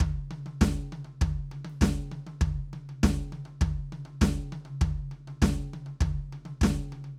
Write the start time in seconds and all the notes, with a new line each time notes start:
0.00 kick, high tom
0.31 high tom
0.46 high tom
0.61 kick, snare, high tom
0.92 high tom
1.04 high tom
1.21 kick, high tom
1.51 high tom
1.65 high tom
1.70 crash
1.81 kick, snare, high tom
2.12 high tom
2.27 high tom
2.41 kick, high tom
2.73 high tom
2.89 high tom
3.03 kick, snare, high tom
3.32 high tom
3.45 high tom
3.61 kick, high tom
3.92 high tom
4.05 high tom
4.21 kick, snare, high tom
4.52 high tom
4.65 high tom
4.81 kick, high tom
5.11 high tom
5.27 high tom
5.42 kick, snare, high tom
5.73 high tom
5.86 high tom
6.00 kick, high tom
6.33 high tom
6.45 high tom
6.61 kick, snare, high tom
6.92 high tom
7.04 high tom